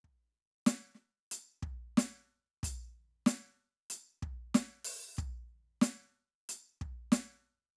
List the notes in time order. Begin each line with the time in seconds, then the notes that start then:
0.06 kick
0.66 snare, percussion
0.95 snare
1.31 percussion
1.62 kick
1.67 percussion
1.97 snare, percussion
2.63 kick, percussion
3.26 snare, percussion
3.90 percussion
4.22 kick, percussion
4.55 snare, percussion
4.85 percussion
5.17 kick, percussion
5.49 percussion
5.82 snare, percussion
6.49 percussion
6.81 kick, percussion
7.12 snare, percussion